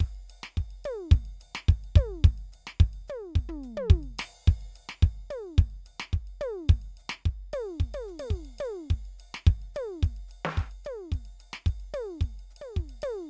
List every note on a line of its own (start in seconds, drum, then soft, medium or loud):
0.01 kick medium
0.01 snare soft
0.01 hi-hat pedal soft
0.01 ride soft
0.15 ride soft
0.29 hi-hat pedal medium
0.29 ride bell medium
0.44 snare medium
0.57 kick medium
0.57 hi-hat pedal soft
0.57 ride soft
0.71 ride soft
0.85 hi-hat pedal medium
0.85 high tom loud
0.85 ride bell soft
1.12 kick loud
1.12 hi-hat pedal soft
1.12 ride soft
1.26 ride soft
1.41 hi-hat pedal medium
1.41 ride soft
1.56 snare loud
1.69 kick loud
1.69 ride soft
1.84 ride soft
1.96 kick loud
1.96 hi-hat pedal medium
1.96 high tom loud
1.96 ride bell soft
2.23 kick loud
2.23 hi-hat pedal soft
2.23 ride soft
2.38 ride soft
2.53 hi-hat pedal medium
2.53 ride bell soft
2.67 snare medium
2.81 kick loud
2.81 ride soft
2.94 ride soft
3.01 kick soft
3.08 hi-hat pedal medium
3.08 high tom loud
3.08 ride bell soft
3.36 kick medium
3.36 ride soft
3.49 floor tom medium
3.49 ride soft
3.64 hi-hat pedal medium
3.64 ride soft
3.77 high tom loud
3.91 kick loud
3.91 ride soft
4.04 ride soft
4.18 snare loud
4.18 hi-hat pedal medium
4.18 ride loud
4.48 kick loud
4.48 ride soft
4.61 ride soft
4.76 hi-hat pedal medium
4.76 ride bell soft
4.90 snare medium
5.03 kick loud
5.03 ride soft
5.31 hi-hat pedal medium
5.31 high tom loud
5.31 ride bell soft
5.59 kick loud
5.59 ride soft
5.71 ride soft
5.86 hi-hat pedal medium
5.86 ride bell soft
6.00 snare loud
6.14 kick medium
6.28 ride soft
6.41 hi-hat pedal medium
6.41 high tom loud
6.41 ride bell soft
6.69 kick loud
6.69 ride soft
6.82 ride soft
6.98 hi-hat pedal medium
6.98 ride bell soft
7.10 snare loud
7.26 kick medium
7.26 hi-hat pedal soft
7.54 hi-hat pedal medium
7.54 high tom loud
7.54 ride bell medium
7.81 kick medium
7.81 ride soft
7.95 high tom loud
7.95 ride bell medium
8.08 hi-hat pedal medium
8.20 high tom medium
8.20 ride bell medium
8.31 kick medium
8.31 hi-hat pedal soft
8.45 ride soft
8.59 high tom loud
8.59 ride bell medium
8.64 hi-hat pedal medium
8.91 kick medium
8.91 ride soft
9.06 ride soft
9.19 hi-hat pedal medium
9.19 ride bell soft
9.35 snare loud
9.47 kick loud
9.47 ride soft
9.62 ride soft
9.75 hi-hat pedal medium
9.75 high tom loud
9.75 ride bell medium
10.03 kick medium
10.03 ride soft
10.17 ride soft
10.29 hi-hat pedal medium
10.29 ride bell soft
10.46 snare loud
10.58 kick medium
10.58 ride soft
10.72 ride soft
10.85 hi-hat pedal medium
10.85 high tom loud
10.85 ride bell soft
11.13 kick medium
11.13 ride soft
11.26 ride soft
11.40 hi-hat pedal medium
11.40 ride soft
11.54 snare loud
11.67 kick medium
11.67 ride soft
11.81 ride soft
11.94 hi-hat pedal medium
11.94 high tom loud
11.94 ride medium
12.22 kick medium
12.22 ride soft
12.40 ride soft
12.51 hi-hat pedal medium
12.57 ride medium
12.62 high tom medium
12.77 kick medium
12.77 hi-hat pedal soft
12.90 ride soft
13.03 hi-hat pedal medium
13.03 high tom loud
13.03 ride bell medium